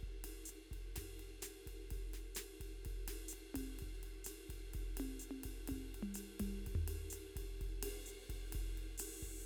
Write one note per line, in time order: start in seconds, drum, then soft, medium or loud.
0.01 kick soft
0.01 ride soft
0.08 kick soft
0.24 snare soft
0.24 ride medium
0.46 hi-hat pedal medium
0.46 ride soft
0.72 kick soft
0.72 ride soft
0.77 kick soft
0.96 kick soft
0.96 snare soft
0.96 ride medium
1.03 kick soft
1.20 ride soft
1.42 snare soft
1.42 hi-hat pedal medium
1.42 ride medium
1.67 kick soft
1.67 ride soft
1.91 kick soft
1.91 ride soft
1.97 kick soft
2.14 snare soft
2.14 ride soft
2.35 snare soft
2.35 hi-hat pedal medium
2.35 ride medium
2.61 kick soft
2.61 ride soft
2.85 kick soft
2.85 ride soft
2.91 kick soft
3.08 snare soft
3.08 ride medium
3.29 hi-hat pedal loud
3.33 ride soft
3.55 kick soft
3.55 high tom medium
3.55 ride medium
3.62 kick soft
3.79 kick soft
3.79 ride soft
3.88 kick soft
3.95 snare soft
4.03 ride soft
4.25 snare soft
4.25 hi-hat pedal medium
4.25 ride medium
4.50 kick soft
4.50 ride soft
4.55 kick soft
4.74 kick soft
4.74 ride soft
4.80 kick soft
4.97 high tom medium
4.97 ride medium
5.20 hi-hat pedal medium
5.20 ride soft
5.31 high tom medium
5.44 kick soft
5.44 ride medium
5.51 kick soft
5.68 kick soft
5.68 high tom medium
5.68 ride medium
5.77 kick soft
5.95 ride soft
6.03 mid tom medium
6.14 hi-hat pedal medium
6.14 ride medium
6.40 kick soft
6.40 mid tom medium
6.40 ride medium
6.47 kick soft
6.67 kick soft
6.67 ride soft
6.73 kick soft
6.73 floor tom medium
6.88 ride medium
7.10 hi-hat pedal medium
7.10 ride medium
7.36 kick soft
7.36 ride medium
7.42 kick soft
7.61 kick soft
7.61 ride soft
7.67 kick soft
7.83 ride medium
7.83 crash medium
8.06 hi-hat pedal medium
8.06 ride soft
8.30 kick soft
8.30 ride soft
8.35 kick soft
8.53 kick soft
8.53 ride medium
8.61 kick soft
8.78 ride soft
8.98 hi-hat pedal medium
8.98 crash loud
8.98 ride medium
9.23 kick soft
9.23 ride soft
9.28 kick soft